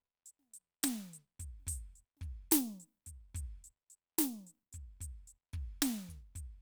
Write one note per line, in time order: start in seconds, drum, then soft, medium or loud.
0.26 closed hi-hat soft
0.39 snare soft
0.53 closed hi-hat medium
0.83 closed hi-hat loud
0.83 snare medium
1.13 closed hi-hat medium
1.39 closed hi-hat medium
1.39 kick soft
1.60 snare soft
1.67 open hi-hat medium
1.67 kick soft
1.95 closed hi-hat soft
2.17 snare soft
2.21 kick soft
2.21 closed hi-hat soft
2.51 closed hi-hat loud
2.51 snare medium
2.80 closed hi-hat soft
3.06 closed hi-hat medium
3.06 kick soft
3.35 closed hi-hat medium
3.35 kick soft
3.40 kick soft
3.64 closed hi-hat soft
3.90 closed hi-hat soft
4.18 closed hi-hat medium
4.18 snare medium
4.47 closed hi-hat soft
4.72 closed hi-hat soft
4.72 kick soft
4.72 snare soft
5.01 closed hi-hat medium
5.01 kick soft
5.27 closed hi-hat soft
5.53 kick soft
5.53 snare soft
5.53 closed hi-hat soft
5.82 closed hi-hat medium
5.82 snare medium
6.09 kick soft
6.09 closed hi-hat soft
6.35 closed hi-hat medium
6.35 kick soft